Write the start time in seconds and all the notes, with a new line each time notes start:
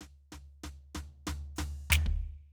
0.01 snare, floor tom
0.32 snare, floor tom
0.63 snare, floor tom
0.94 snare, floor tom
1.27 snare, floor tom
1.56 snare, floor tom, hi-hat pedal
1.90 snare, floor tom
2.06 kick